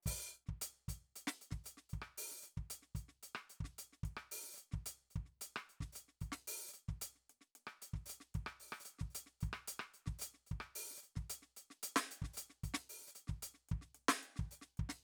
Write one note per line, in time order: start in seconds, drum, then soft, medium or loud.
0.04 open hi-hat medium
0.04 kick soft
0.04 hi-hat pedal soft
0.13 kick soft
0.33 closed hi-hat soft
0.46 kick soft
0.46 snare soft
0.61 closed hi-hat medium
0.88 closed hi-hat soft
0.88 kick soft
1.16 closed hi-hat soft
1.27 snare medium
1.41 closed hi-hat soft
1.51 kick soft
1.51 snare soft
1.64 closed hi-hat medium
1.64 hi-hat pedal soft
1.77 snare soft
1.89 closed hi-hat soft
1.89 kick soft
2.02 cross-stick medium
2.18 open hi-hat medium
2.31 snare soft
2.42 closed hi-hat soft
2.42 hi-hat pedal soft
2.56 kick soft
2.56 snare soft
2.70 closed hi-hat medium
2.82 snare soft
2.95 closed hi-hat soft
2.95 kick soft
3.08 snare soft
3.23 closed hi-hat soft
3.35 cross-stick medium
3.49 closed hi-hat soft
3.60 kick soft
3.64 snare soft
3.78 closed hi-hat medium
3.92 snare soft
4.03 kick soft
4.03 closed hi-hat soft
4.17 cross-stick medium
4.31 open hi-hat medium
4.43 snare soft
4.53 closed hi-hat soft
4.53 hi-hat pedal medium
4.71 kick soft
4.71 snare soft
4.86 closed hi-hat medium
5.10 closed hi-hat soft
5.16 kick soft
5.25 snare soft
5.41 closed hi-hat medium
5.56 cross-stick medium
5.69 closed hi-hat soft
5.80 kick soft
5.80 snare soft
5.92 closed hi-hat medium
5.92 hi-hat pedal soft
6.08 snare soft
6.21 closed hi-hat soft
6.21 kick soft
6.32 snare medium
6.47 open hi-hat medium
6.68 hi-hat pedal soft
6.73 closed hi-hat soft
6.88 kick soft
6.88 snare soft
7.01 closed hi-hat medium
7.15 snare soft
7.29 closed hi-hat soft
7.41 snare soft
7.55 closed hi-hat soft
7.67 cross-stick medium
7.82 closed hi-hat soft
7.93 kick soft
7.93 snare soft
8.06 closed hi-hat medium
8.06 hi-hat pedal medium
8.20 snare soft
8.34 kick soft
8.34 closed hi-hat soft
8.46 cross-stick medium
8.60 open hi-hat soft
8.72 cross-stick medium
8.80 hi-hat pedal soft
8.85 closed hi-hat soft
8.99 kick soft
8.99 snare soft
9.10 hi-hat pedal soft
9.15 closed hi-hat medium
9.26 snare soft
9.40 closed hi-hat soft
9.40 kick soft
9.48 kick soft
9.53 cross-stick medium
9.67 closed hi-hat medium
9.79 cross-stick medium
9.94 closed hi-hat soft
10.06 kick soft
10.06 snare soft
10.19 closed hi-hat medium
10.19 hi-hat pedal medium
10.34 snare soft
10.46 closed hi-hat soft
10.51 kick soft
10.60 cross-stick medium
10.75 open hi-hat medium
10.91 snare soft
10.97 hi-hat pedal medium
11.03 closed hi-hat soft
11.15 kick soft
11.15 snare soft
11.22 kick soft
11.30 closed hi-hat medium
11.42 snare soft
11.56 closed hi-hat soft
11.70 snare soft
11.83 closed hi-hat medium
11.96 snare medium
12.11 closed hi-hat soft
12.22 kick soft
12.22 snare soft
12.33 closed hi-hat medium
12.33 hi-hat pedal soft
12.50 snare soft
12.63 closed hi-hat soft
12.63 kick soft
12.74 snare medium
12.89 open hi-hat medium
13.01 snare soft
13.07 hi-hat pedal soft
13.15 closed hi-hat soft
13.27 kick soft
13.27 snare soft
13.42 closed hi-hat medium
13.54 snare soft
13.69 kick soft
13.69 closed hi-hat soft
13.81 snare soft
13.94 closed hi-hat soft
14.08 snare loud
14.23 closed hi-hat soft
14.36 kick soft
14.36 snare soft
14.44 kick soft
14.51 open hi-hat soft
14.51 hi-hat pedal soft
14.61 snare soft
14.77 kick soft
14.77 closed hi-hat soft
14.89 snare medium